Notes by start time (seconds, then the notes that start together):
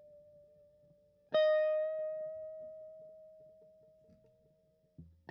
1.36 D#5